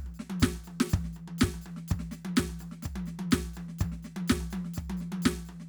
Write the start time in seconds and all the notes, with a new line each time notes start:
0.07 high tom
0.15 percussion
0.20 snare
0.30 high tom
0.41 kick, snare, percussion
0.56 high tom
0.65 high tom, percussion
0.81 snare
0.90 percussion
0.94 kick, high tom
1.05 snare
1.14 high tom, percussion
1.28 high tom
1.39 snare, percussion
1.44 kick
1.54 high tom
1.62 percussion
1.67 high tom
1.77 snare
1.89 kick, high tom, percussion
2.00 snare
2.12 snare, percussion
2.25 high tom
2.37 kick, snare, percussion
2.50 high tom
2.60 high tom, percussion
2.72 snare
2.83 kick, snare, percussion
2.96 high tom
3.06 snare, percussion
3.20 high tom
3.32 kick, snare, percussion
3.45 high tom
3.54 high tom, percussion
3.69 snare
3.79 kick, high tom, percussion
3.93 snare
4.03 snare, percussion
4.17 high tom
4.28 kick, snare, percussion
4.41 high tom
4.51 high tom, percussion
4.65 snare
4.74 snare, percussion
4.78 kick
4.90 high tom
4.98 snare, percussion
5.13 high tom
5.23 kick, snare, percussion
5.37 high tom
5.46 high tom, percussion
5.61 snare